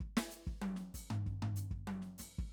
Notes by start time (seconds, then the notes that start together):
0.00 kick
0.17 snare
0.31 snare, hi-hat pedal
0.47 kick
0.61 high tom
0.76 snare
0.94 kick, snare, hi-hat pedal
1.10 floor tom
1.26 kick, snare
1.42 floor tom
1.56 snare, hi-hat pedal
1.71 kick
1.87 high tom
2.02 snare
2.18 kick, snare, hi-hat pedal
2.38 kick